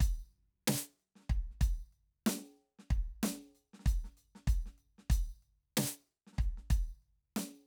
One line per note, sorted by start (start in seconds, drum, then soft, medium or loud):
0.01 closed hi-hat medium
0.01 kick medium
0.33 closed hi-hat soft
0.68 closed hi-hat medium
0.68 snare loud
1.00 closed hi-hat soft
1.16 snare soft
1.20 snare soft
1.30 kick medium
1.30 closed hi-hat soft
1.51 snare soft
1.62 closed hi-hat medium
1.62 kick medium
1.93 closed hi-hat soft
2.27 closed hi-hat medium
2.27 snare loud
2.80 snare soft
2.91 kick medium
2.91 closed hi-hat soft
3.24 closed hi-hat medium
3.24 snare loud
3.56 closed hi-hat soft
3.74 snare soft
3.80 snare soft
3.84 kick medium
3.84 snare soft
3.87 closed hi-hat medium
3.87 snare soft
4.05 snare soft
4.18 closed hi-hat soft
4.36 snare soft
4.48 closed hi-hat medium
4.48 kick medium
4.66 snare soft
4.79 closed hi-hat soft
4.99 snare soft
5.11 closed hi-hat medium
5.11 kick medium
5.43 closed hi-hat soft
5.78 closed hi-hat medium
5.78 snare loud
6.27 snare soft
6.34 snare soft
6.37 closed hi-hat soft
6.37 kick medium
6.37 snare soft
6.58 snare soft
6.71 closed hi-hat medium
6.71 kick medium
7.03 closed hi-hat soft
7.37 closed hi-hat medium
7.37 snare loud